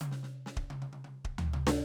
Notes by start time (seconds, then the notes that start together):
0.00 hi-hat pedal, high tom
0.11 snare
0.23 snare
0.46 snare
0.57 kick
0.70 high tom
0.82 high tom
0.93 high tom
1.04 high tom
1.25 kick
1.38 floor tom
1.53 high tom
1.67 snare